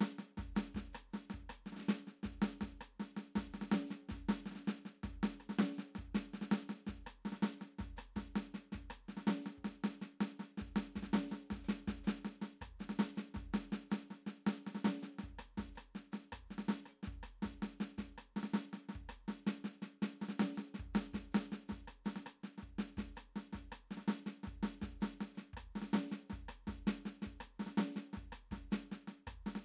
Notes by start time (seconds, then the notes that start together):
0.01 snare
0.19 snare, hi-hat pedal
0.38 kick, snare
0.56 snare, hi-hat pedal
0.75 kick, snare
0.93 cross-stick, hi-hat pedal
1.13 snare, hi-hat pedal
1.30 kick, snare
1.50 cross-stick, hi-hat pedal
1.66 snare
1.72 snare
1.77 snare
1.79 snare
1.86 snare, hi-hat pedal
2.07 snare
2.23 kick, snare
2.42 snare
2.46 hi-hat pedal
2.61 kick, snare
2.81 cross-stick, hi-hat pedal
3.00 snare
3.17 snare, hi-hat pedal
3.36 kick, snare
3.52 snare, hi-hat pedal
3.62 snare
3.72 snare
3.91 snare, hi-hat pedal
4.09 snare
4.11 kick, snare
4.29 snare, hi-hat pedal
4.46 snare
4.52 snare
4.55 snare
4.67 snare, hi-hat pedal
4.85 snare
5.04 kick, snare
5.23 snare
5.40 cross-stick, hi-hat pedal
5.49 snare
5.59 snare
5.79 snare, hi-hat pedal
5.95 kick, snare
6.15 snare, hi-hat pedal
6.34 snare
6.42 snare
6.52 hi-hat pedal
6.69 snare
6.87 kick, snare
7.07 cross-stick
7.25 snare
7.32 snare
7.43 snare
7.58 snare, hi-hat pedal
7.79 kick, snare
7.97 cross-stick, hi-hat pedal
8.16 kick, snare
8.36 snare
8.54 snare, hi-hat pedal
8.72 kick, snare
8.90 cross-stick, hi-hat pedal
9.09 snare
9.17 snare
9.27 snare, hi-hat pedal
9.46 snare
9.58 kick
9.65 snare, hi-hat pedal
9.84 snare
10.02 snare
10.21 snare
10.40 snare, hi-hat pedal
10.58 kick, snare
10.76 snare, hi-hat pedal
10.96 kick, snare
11.03 snare
11.13 snare
11.31 snare, hi-hat pedal
11.51 kick, snare
11.53 snare
11.64 hi-hat pedal
11.69 snare
11.88 kick, snare
12.04 snare, hi-hat pedal
12.25 snare
12.42 snare, hi-hat pedal
12.61 kick, cross-stick
12.80 snare, hi-hat pedal
12.90 snare
12.99 snare
13.16 snare, hi-hat pedal
13.34 kick, snare
13.53 snare, hi-hat pedal
13.72 snare
13.91 snare, hi-hat pedal
14.11 snare
14.27 snare, hi-hat pedal
14.47 snare
14.67 snare, hi-hat pedal
14.75 snare
14.85 snare
15.03 snare, hi-hat pedal
15.19 snare
15.24 kick
15.39 cross-stick, hi-hat pedal
15.58 kick, snare
15.75 cross-stick, hi-hat pedal
15.95 snare
16.12 snare, hi-hat pedal
16.32 kick, cross-stick
16.51 snare, hi-hat pedal
16.58 snare
16.69 snare
16.86 cross-stick, hi-hat pedal
17.03 snare
17.07 kick
17.23 cross-stick, hi-hat pedal
17.43 kick, snare
17.62 snare, hi-hat pedal
17.80 snare
17.98 kick, snare
18.03 hi-hat pedal
18.18 cross-stick
18.36 snare, hi-hat pedal
18.43 snare
18.54 snare
18.73 snare, hi-hat pedal
18.89 snare
18.95 kick
19.09 cross-stick, hi-hat pedal
19.28 snare
19.47 snare, hi-hat pedal
19.64 snare
19.82 snare, hi-hat pedal
20.02 snare
20.20 snare, hi-hat pedal
20.29 snare
20.40 snare
20.58 snare, hi-hat pedal
20.74 snare
20.80 kick
20.94 snare, hi-hat pedal
21.14 kick, snare
21.32 snare, hi-hat pedal
21.52 snare
21.68 kick, snare, hi-hat pedal
21.88 cross-stick
22.05 snare, hi-hat pedal
22.16 snare
22.26 cross-stick
22.44 snare, hi-hat pedal
22.58 snare
22.63 kick
22.79 snare, hi-hat pedal
22.97 kick, snare
23.16 cross-stick, hi-hat pedal
23.36 snare
23.53 kick, snare, hi-hat pedal
23.72 cross-stick
23.91 snare, hi-hat pedal
23.97 snare
24.08 snare
24.26 snare, hi-hat pedal
24.44 kick, snare
24.63 snare, hi-hat pedal
24.82 kick, snare
25.01 snare, hi-hat pedal
25.21 snare
25.35 snare, hi-hat pedal
25.53 kick, cross-stick
25.75 snare, hi-hat pedal
25.82 snare
25.93 snare
26.12 snare, hi-hat pedal
26.30 kick, snare
26.49 cross-stick, hi-hat pedal
26.67 kick, snare
26.86 snare, hi-hat pedal
27.06 snare
27.22 snare, hi-hat pedal
27.26 kick
27.41 cross-stick
27.60 snare, hi-hat pedal
27.66 snare
27.78 snare
27.96 snare, hi-hat pedal
28.13 kick, snare
28.32 cross-stick, hi-hat pedal
28.51 kick, snare
28.71 snare, hi-hat pedal
28.92 snare
29.08 snare, hi-hat pedal
29.27 kick, cross-stick
29.46 snare, hi-hat pedal
29.55 snare